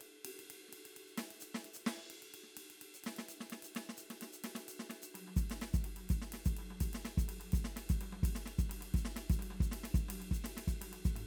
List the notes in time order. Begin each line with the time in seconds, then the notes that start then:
0.01 ride
0.25 ride
0.39 ride
0.50 ride
0.68 snare
0.73 ride
0.85 ride
0.97 ride
1.08 hi-hat pedal
1.18 snare, ride
1.31 ride
1.40 hi-hat pedal, ride
1.55 snare
1.65 ride
1.74 hi-hat pedal, ride
1.87 snare, ride
1.95 hi-hat pedal
2.10 ride
2.22 ride
2.34 ride
2.43 snare
2.57 snare, ride
2.70 ride
2.81 ride
2.94 hi-hat pedal
3.04 snare, ride
3.17 snare, ride
3.29 hi-hat pedal, ride
3.41 snare
3.50 snare, ride
3.63 hi-hat pedal, ride
3.75 snare, ride
3.89 snare
3.97 hi-hat pedal, ride
4.10 snare, ride
4.21 snare, ride
4.33 hi-hat pedal
4.44 snare, ride
4.55 snare, ride
4.68 hi-hat pedal, ride
4.79 snare
4.90 snare, ride
5.02 hi-hat pedal, ride
5.15 high tom, ride
5.28 high tom
5.36 kick, hi-hat pedal, ride
5.50 snare, ride
5.62 snare, ride
5.73 kick, hi-hat pedal
5.84 high tom, ride
5.96 high tom, ride
6.09 kick, hi-hat pedal, ride
6.22 snare
6.32 snare, ride
6.45 kick, hi-hat pedal, ride
6.57 high tom, ride
6.71 high tom
6.80 kick, hi-hat pedal, ride
6.93 snare, ride
7.05 snare, ride
7.18 kick, hi-hat pedal
7.28 high tom, ride
7.40 high tom, ride
7.52 kick, hi-hat pedal, ride
7.64 snare
7.76 snare, ride
7.89 kick, hi-hat pedal, ride
8.01 high tom, ride
8.13 high tom
8.23 kick, hi-hat pedal, ride
8.35 snare, ride
8.46 snare, ride
8.58 kick, hi-hat pedal
8.70 high tom, ride
8.81 high tom, ride
8.94 kick, hi-hat pedal, ride
9.05 snare
9.16 snare, ride
9.30 kick, hi-hat pedal, ride
9.39 high tom, ride
9.51 high tom
9.60 kick, hi-hat pedal
9.72 snare, ride
9.84 snare, ride
9.94 kick, hi-hat pedal
10.09 high tom, ride
10.20 high tom, ride
10.31 kick, hi-hat pedal
10.44 snare, ride
10.57 snare, ride
10.68 kick, hi-hat pedal
10.81 high tom, ride
10.93 high tom, ride
11.05 kick, hi-hat pedal
11.16 floor tom, ride